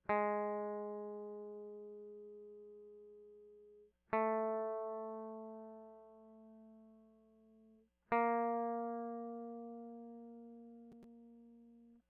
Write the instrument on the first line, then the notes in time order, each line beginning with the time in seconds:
electric guitar
0.11 G#3
4.14 A3
8.13 A#3